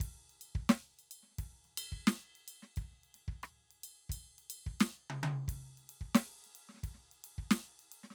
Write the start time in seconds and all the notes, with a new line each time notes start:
0.01 kick, ride
0.30 ride
0.42 ride bell
0.56 kick
0.70 snare, ride bell
0.99 ride bell
1.12 ride bell
1.23 snare
1.28 snare
1.32 snare
1.39 kick, ride
1.52 snare
1.65 floor tom, ride
1.78 ride bell
1.93 kick
2.08 snare, ride
2.36 ride
2.49 ride bell
2.63 snare
2.77 kick, ride bell
2.93 snare
3.04 ride
3.15 snare, ride, floor tom
3.29 kick
3.44 cross-stick, floor tom, ride
3.71 ride
3.84 ride bell
4.10 kick, ride bell
4.39 ride
4.51 ride bell
4.67 kick
4.81 snare, ride bell
5.10 mid tom
5.24 mid tom
5.49 kick, ride
5.78 ride
5.84 snare
5.90 ride
6.01 kick
6.15 snare, ride
6.45 snare, ride
6.56 ride
6.69 snare
6.75 snare
6.77 snare
6.84 kick, ride
6.95 snare
7.00 snare
7.12 ride
7.25 ride
7.39 kick
7.51 snare, ride
7.80 ride
7.92 ride
8.04 snare
8.11 snare